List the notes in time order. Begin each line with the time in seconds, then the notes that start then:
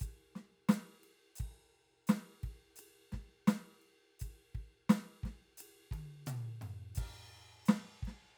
0.01 kick, hi-hat pedal, ride
0.36 snare, ride
0.70 snare, hi-hat pedal, ride
1.04 ride
1.36 hi-hat pedal, crash
1.41 kick
2.08 snare, hi-hat pedal, ride
2.44 kick, ride
2.77 hi-hat pedal, ride
3.13 kick, snare, ride
3.48 snare, hi-hat pedal, ride
3.83 ride
4.20 kick, hi-hat pedal, ride
4.56 kick, ride
4.90 snare, hi-hat pedal, ride
5.24 kick, snare, ride
5.58 hi-hat pedal, ride
5.92 kick, high tom, ride
6.27 hi-hat pedal, mid tom, ride
6.62 floor tom, ride
6.96 kick, hi-hat pedal, crash
7.67 snare, hi-hat pedal, ride
8.04 kick, ride
8.08 snare